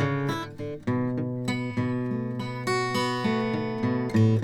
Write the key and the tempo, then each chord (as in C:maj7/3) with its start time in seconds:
E major, 68 BPM
0.00 E:7
0.88 B:7